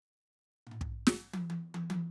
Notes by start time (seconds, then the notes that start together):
0.67 floor tom
0.72 floor tom
0.81 kick
1.07 snare
1.34 high tom
1.50 high tom
1.75 high tom
1.90 high tom